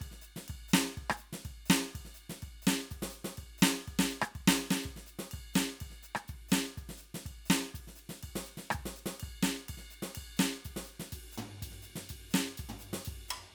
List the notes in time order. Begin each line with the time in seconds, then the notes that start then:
0.01 kick, ride bell
0.07 kick
0.11 snare
0.22 hi-hat pedal, ride
0.36 snare
0.48 kick, ride bell
0.55 kick
0.68 hi-hat pedal
0.74 snare
0.97 kick, ride bell
1.03 kick
1.10 cross-stick
1.17 hi-hat pedal, ride
1.33 snare
1.45 kick, ride bell
1.51 kick
1.66 hi-hat pedal
1.70 snare
1.95 kick, ride bell
2.05 snare
2.14 hi-hat pedal, ride
2.30 snare
2.42 kick, ride bell
2.48 kick
2.62 hi-hat pedal
2.67 snare
2.91 kick, ride
2.97 kick
3.02 snare
3.10 hi-hat pedal, ride
3.24 snare
3.38 kick, ride bell
3.43 kick
3.58 hi-hat pedal
3.62 snare
3.88 kick, ride bell
3.93 kick
3.99 snare
4.08 hi-hat pedal, ride
4.22 cross-stick
4.35 kick, ride bell
4.41 kick
4.48 snare
4.57 hi-hat pedal, ride
4.71 snare
4.84 kick, ride bell
4.96 snare
5.06 hi-hat pedal, ride
5.19 snare
5.31 kick, ride bell
5.40 kick
5.54 snare, hi-hat pedal
5.81 kick, ride bell
5.91 snare
6.03 hi-hat pedal, ride
6.15 cross-stick
6.28 kick, ride
6.35 kick
6.49 snare, hi-hat pedal
6.78 kick, ride
6.89 snare
6.98 hi-hat pedal
7.03 ride
7.14 snare
7.26 kick, ride bell
7.46 hi-hat pedal
7.50 snare
7.74 kick, ride
7.88 snare
7.96 hi-hat pedal, ride
8.09 snare
8.23 kick, ride bell
8.29 kick
8.36 snare
8.45 hi-hat pedal, ride
8.57 snare
8.71 kick, cross-stick, ride
8.81 kick
8.86 snare
8.96 hi-hat pedal
9.06 snare
9.20 kick, ride bell
9.29 kick
9.43 snare, hi-hat pedal
9.69 kick, ride bell
9.75 kick, snare
9.90 hi-hat pedal, ride
10.02 snare
10.15 kick, ride bell
10.23 kick
10.37 snare, hi-hat pedal
10.65 kick, ride
10.71 kick
10.76 snare
10.84 hi-hat pedal
10.88 ride
11.00 snare
11.12 kick, ride
11.18 kick
11.32 hi-hat pedal
11.38 floor tom
11.62 kick, ride
11.71 snare
11.82 hi-hat pedal, ride
11.96 snare
12.09 kick, ride
12.31 snare, hi-hat pedal
12.58 kick, ride
12.65 kick
12.69 floor tom
12.79 hi-hat pedal, ride
12.93 snare
13.05 kick, ride
13.14 kick
13.29 hi-hat pedal, floor tom